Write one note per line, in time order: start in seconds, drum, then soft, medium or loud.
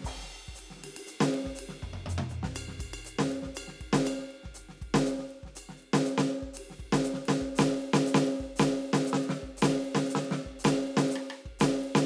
0.01 kick medium
0.01 snare soft
0.05 hi-hat pedal medium
0.05 crash medium
0.11 kick soft
0.17 snare soft
0.23 snare soft
0.48 kick soft
0.55 hi-hat pedal medium
0.55 ride medium
0.70 snare soft
0.77 snare soft
0.81 snare soft
0.83 snare soft
0.83 ride loud
0.85 snare soft
0.97 ride loud
1.07 hi-hat pedal medium
1.07 ride bell medium
1.21 snare loud
1.27 cross-stick soft
1.27 hi-hat pedal soft
1.34 ride medium
1.44 kick soft
1.44 snare soft
1.55 hi-hat pedal medium
1.55 ride loud
1.69 snare soft
1.82 kick soft
1.82 mid tom medium
1.94 mid tom medium
2.06 hi-hat pedal loud
2.06 mid tom loud
2.18 mid tom loud
2.29 hi-hat pedal medium
2.29 mid tom medium
2.43 kick soft
2.43 snare medium
2.55 hi-hat pedal loud
2.55 ride bell loud
2.68 snare soft
2.77 kick medium
2.77 hi-hat pedal soft
2.77 ride bell medium
2.86 kick soft
2.94 ride bell loud
3.05 hi-hat pedal loud
3.05 ride medium
3.19 snare loud
3.28 hi-hat pedal soft
3.32 ride medium
3.42 kick soft
3.42 snare soft
3.55 hi-hat pedal medium
3.55 ride bell loud
3.68 snare soft
3.77 kick soft
3.77 hi-hat pedal soft
3.81 ride medium
3.93 snare loud
4.05 hi-hat pedal loud
4.05 ride bell loud
4.18 snare soft
4.26 hi-hat pedal soft
4.31 ride soft
4.44 kick soft
4.44 snare soft
4.54 hi-hat pedal loud
4.54 ride medium
4.54 floor tom soft
4.69 snare soft
4.77 hi-hat pedal soft
4.82 kick soft
4.82 ride soft
4.87 kick soft
4.94 snare loud
5.06 hi-hat pedal loud
5.06 ride soft
5.18 snare soft
5.27 hi-hat pedal soft
5.27 ride soft
5.43 kick soft
5.43 snare soft
5.56 hi-hat pedal loud
5.56 ride bell medium
5.69 snare soft
5.77 hi-hat pedal soft
5.83 ride soft
5.94 snare loud
6.05 hi-hat pedal medium
6.18 snare loud
6.25 hi-hat pedal soft
6.43 kick soft
6.54 hi-hat pedal loud
6.54 ride loud
6.70 snare soft
6.75 hi-hat pedal soft
6.79 kick soft
6.79 ride soft
6.93 snare loud
7.04 hi-hat pedal loud
7.04 ride medium
7.14 snare medium
7.25 snare loud
7.25 hi-hat pedal soft
7.25 ride medium
7.41 kick soft
7.56 snare loud
7.56 hi-hat pedal loud
7.56 ride loud
7.68 snare soft
7.77 hi-hat pedal soft
7.82 ride soft
7.94 snare loud
8.07 hi-hat pedal loud
8.07 ride medium
8.15 snare loud
8.25 hi-hat pedal soft
8.25 ride medium
8.40 kick soft
8.56 snare loud
8.56 hi-hat pedal loud
8.56 ride loud
8.78 hi-hat pedal soft
8.83 ride soft
8.93 snare loud
9.05 hi-hat pedal loud
9.05 ride medium
9.13 snare medium
9.24 ride medium
9.29 snare medium
9.43 kick soft
9.57 hi-hat pedal loud
9.62 snare loud
9.62 ride loud
9.69 snare soft
9.79 hi-hat pedal soft
9.85 ride medium
9.95 snare loud
10.07 hi-hat pedal loud
10.07 ride bell medium
10.15 snare medium
10.25 ride medium
10.30 snare medium
10.30 hi-hat pedal soft
10.46 kick soft
10.59 hi-hat pedal loud
10.65 snare loud
10.65 ride bell loud
10.73 snare soft
10.83 hi-hat pedal soft
10.88 ride soft
10.97 snare loud
11.09 hi-hat pedal loud
11.09 ride medium
11.16 cross-stick medium
11.24 ride soft
11.30 cross-stick medium
11.30 hi-hat pedal soft
11.46 kick soft
11.59 snare loud
11.59 hi-hat pedal loud
11.59 ride loud
11.67 snare soft
11.81 hi-hat pedal soft
11.81 ride medium
11.95 snare loud